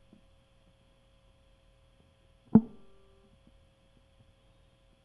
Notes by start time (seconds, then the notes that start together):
2.56 A3